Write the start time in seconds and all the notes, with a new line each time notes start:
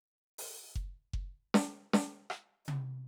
0.38 open hi-hat
0.73 kick, hi-hat pedal
1.13 kick, ride
1.54 snare
1.93 snare
2.30 cross-stick
2.65 hi-hat pedal, high tom